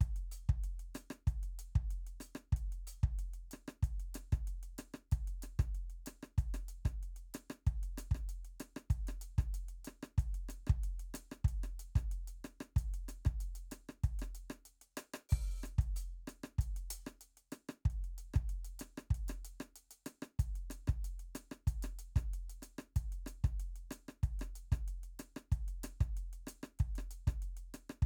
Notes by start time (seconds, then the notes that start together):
0.01 kick, closed hi-hat
0.16 closed hi-hat
0.32 closed hi-hat
0.49 kick
0.64 closed hi-hat
0.80 closed hi-hat
0.95 closed hi-hat, cross-stick
1.11 cross-stick
1.27 kick, closed hi-hat
1.43 closed hi-hat
1.59 closed hi-hat
1.76 kick
1.91 closed hi-hat
2.07 closed hi-hat
2.21 closed hi-hat, cross-stick
2.35 cross-stick
2.53 kick, closed hi-hat
2.72 closed hi-hat
2.87 closed hi-hat
3.03 kick
3.19 closed hi-hat
3.34 closed hi-hat
3.51 cross-stick, closed hi-hat
3.68 cross-stick
3.83 kick, closed hi-hat
4.00 closed hi-hat
4.15 cross-stick, closed hi-hat
4.33 kick, cross-stick
4.48 closed hi-hat
4.63 closed hi-hat
4.79 cross-stick, closed hi-hat
4.94 cross-stick
5.12 kick, closed hi-hat
5.28 closed hi-hat
5.43 cross-stick, closed hi-hat
5.59 kick, cross-stick
5.75 closed hi-hat
5.90 closed hi-hat
6.07 cross-stick, closed hi-hat
6.23 cross-stick
6.38 kick, closed hi-hat
6.54 cross-stick, closed hi-hat
6.69 closed hi-hat
6.85 kick, cross-stick
7.03 closed hi-hat
7.17 closed hi-hat
7.34 cross-stick, closed hi-hat
7.50 cross-stick
7.67 kick, closed hi-hat
7.83 closed hi-hat
7.98 cross-stick, closed hi-hat
8.11 kick, cross-stick
8.29 closed hi-hat
8.45 closed hi-hat
8.60 cross-stick, closed hi-hat
8.77 cross-stick
8.90 kick, closed hi-hat
9.08 cross-stick, closed hi-hat
9.22 closed hi-hat
9.38 kick, cross-stick
9.55 closed hi-hat
9.69 closed hi-hat
9.85 cross-stick, closed hi-hat
10.03 cross-stick
10.18 kick, closed hi-hat
10.35 closed hi-hat
10.49 cross-stick, closed hi-hat
10.67 kick, cross-stick
10.84 closed hi-hat
11.00 closed hi-hat
11.14 cross-stick, closed hi-hat
11.32 cross-stick
11.45 kick, closed hi-hat
11.64 cross-stick, closed hi-hat
11.80 closed hi-hat
11.96 kick, cross-stick
12.12 closed hi-hat
12.28 closed hi-hat
12.45 cross-stick, closed hi-hat
12.61 cross-stick
12.76 kick, closed hi-hat
12.94 closed hi-hat
13.09 cross-stick, closed hi-hat
13.25 kick, cross-stick
13.41 closed hi-hat
13.56 closed hi-hat
13.72 cross-stick, closed hi-hat
13.89 cross-stick
14.04 kick, closed hi-hat
14.19 cross-stick, closed hi-hat
14.35 closed hi-hat
14.50 cross-stick
14.66 closed hi-hat
14.82 closed hi-hat
14.97 cross-stick, closed hi-hat
15.14 cross-stick
15.30 open hi-hat, kick
15.63 cross-stick, closed hi-hat, hi-hat pedal
15.79 kick, closed hi-hat
15.97 closed hi-hat
16.28 cross-stick, closed hi-hat
16.44 cross-stick
16.59 kick, closed hi-hat
16.77 closed hi-hat
16.91 closed hi-hat
17.07 cross-stick
17.21 closed hi-hat
17.38 closed hi-hat
17.52 cross-stick, closed hi-hat
17.69 cross-stick
17.86 kick
17.90 closed hi-hat
18.04 closed hi-hat
18.18 closed hi-hat
18.34 kick, cross-stick
18.50 closed hi-hat
18.65 closed hi-hat
18.80 cross-stick, closed hi-hat
18.98 cross-stick
19.11 kick, closed hi-hat
19.29 cross-stick, closed hi-hat
19.45 closed hi-hat
19.61 cross-stick
19.76 closed hi-hat
19.91 closed hi-hat
20.06 cross-stick, closed hi-hat
20.22 cross-stick
20.39 kick, closed hi-hat
20.56 closed hi-hat
20.70 cross-stick, closed hi-hat
20.88 kick, cross-stick
21.05 closed hi-hat
21.20 closed hi-hat
21.35 cross-stick, closed hi-hat
21.52 cross-stick
21.67 kick, closed hi-hat
21.83 cross-stick, closed hi-hat
21.99 closed hi-hat
22.16 kick, cross-stick
22.34 closed hi-hat
22.50 closed hi-hat
22.63 cross-stick, closed hi-hat
22.79 cross-stick
22.96 kick, closed hi-hat
23.13 closed hi-hat
23.27 cross-stick, closed hi-hat
23.44 kick, cross-stick
23.60 closed hi-hat
23.76 closed hi-hat
23.91 cross-stick, closed hi-hat
24.09 cross-stick
24.23 kick, closed hi-hat
24.40 cross-stick, closed hi-hat
24.56 closed hi-hat
24.72 kick, cross-stick
24.88 closed hi-hat
25.04 closed hi-hat
25.20 cross-stick, closed hi-hat
25.37 cross-stick
25.52 kick, closed hi-hat
25.68 closed hi-hat
25.84 cross-stick, closed hi-hat
26.01 kick, cross-stick
26.17 closed hi-hat
26.33 closed hi-hat
26.47 cross-stick, closed hi-hat
26.63 cross-stick
26.79 kick, closed hi-hat
26.96 cross-stick, closed hi-hat
27.11 closed hi-hat
27.28 kick, cross-stick
27.42 closed hi-hat
27.57 closed hi-hat
27.74 cross-stick, closed hi-hat
27.90 cross-stick
28.03 kick